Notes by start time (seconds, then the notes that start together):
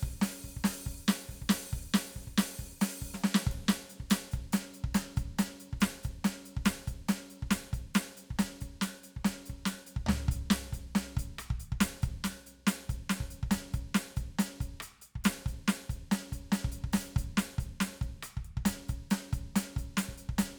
0.01 open hi-hat, kick, snare
0.22 open hi-hat, snare
0.44 open hi-hat, kick, snare
0.57 kick
0.64 open hi-hat, snare
0.85 open hi-hat, kick, snare
1.08 open hi-hat, snare
1.29 open hi-hat, kick
1.42 kick
1.50 open hi-hat, snare
1.72 open hi-hat, kick, snare
1.94 open hi-hat, snare
2.16 open hi-hat, kick, snare
2.27 kick
2.38 open hi-hat, snare
2.58 open hi-hat, kick, snare
2.81 open hi-hat, snare
2.97 snare
3.02 open hi-hat, kick
3.14 snare
3.20 hi-hat pedal
3.24 snare
3.35 snare
3.42 snare
3.47 kick
3.52 crash
3.69 closed hi-hat, snare
3.90 closed hi-hat
4.00 kick
4.10 closed hi-hat, snare
4.32 closed hi-hat, kick, snare
4.53 closed hi-hat, snare
4.72 closed hi-hat, snare
4.84 kick
4.95 closed hi-hat, snare
5.15 closed hi-hat, kick, snare
5.39 closed hi-hat, snare
5.53 snare
5.60 closed hi-hat
5.73 kick
5.81 closed hi-hat, snare
6.03 closed hi-hat, kick, snare
6.25 closed hi-hat, snare
6.44 closed hi-hat, snare
6.57 kick
6.66 closed hi-hat, snare
6.85 closed hi-hat, kick, snare
7.09 closed hi-hat, snare
7.27 closed hi-hat, snare
7.43 kick
7.51 closed hi-hat, snare
7.71 closed hi-hat, kick, snare
7.95 closed hi-hat, snare
8.17 closed hi-hat
8.31 kick
8.39 closed hi-hat, snare
8.59 closed hi-hat, kick, snare
8.82 closed hi-hat, snare
9.04 closed hi-hat, snare
9.17 kick
9.25 closed hi-hat, snare
9.45 closed hi-hat, snare
9.50 kick
9.66 closed hi-hat, snare
9.85 closed hi-hat, snare
9.97 kick
10.07 snare, floor tom
10.29 closed hi-hat, kick
10.51 closed hi-hat, snare
10.72 closed hi-hat, kick, snare
10.95 closed hi-hat, snare
11.17 closed hi-hat, kick, snare
11.39 closed hi-hat, cross-stick
11.51 kick, snare
11.60 closed hi-hat
11.72 kick
11.81 closed hi-hat, snare
12.02 closed hi-hat, kick, snare
12.24 closed hi-hat, snare
12.46 closed hi-hat, snare
12.67 closed hi-hat, snare
12.87 closed hi-hat, kick, snare
13.10 closed hi-hat, snare
13.21 kick, snare
13.31 closed hi-hat
13.43 kick
13.51 closed hi-hat, snare
13.71 closed hi-hat, kick, snare
13.95 closed hi-hat, snare
14.13 closed hi-hat, kick, snare
14.39 closed hi-hat, snare
14.52 snare
14.61 closed hi-hat, kick
14.81 closed hi-hat, cross-stick
14.99 closed hi-hat, snare
15.16 kick
15.24 closed hi-hat, snare
15.46 closed hi-hat, kick
15.68 closed hi-hat, snare
15.90 closed hi-hat, kick
16.12 closed hi-hat, snare
16.20 snare
16.25 snare
16.32 closed hi-hat, kick
16.52 closed hi-hat, snare
16.65 kick
16.72 closed hi-hat
16.84 kick
16.93 open hi-hat, snare
17.07 snare
17.16 closed hi-hat, kick
17.38 closed hi-hat, snare
17.59 closed hi-hat, kick
17.81 closed hi-hat, snare
17.89 snare
17.95 snare
18.02 kick, closed hi-hat
18.23 closed hi-hat, cross-stick
18.31 snare
18.36 kick, snare
18.37 snare
18.45 closed hi-hat
18.57 kick
18.66 closed hi-hat, snare
18.87 closed hi-hat, kick, snare
19.11 closed hi-hat, snare
19.32 closed hi-hat, kick, snare
19.56 closed hi-hat, snare
19.77 closed hi-hat, kick
19.97 closed hi-hat, snare
20.09 kick, snare
20.18 closed hi-hat
20.29 kick
20.39 closed hi-hat, snare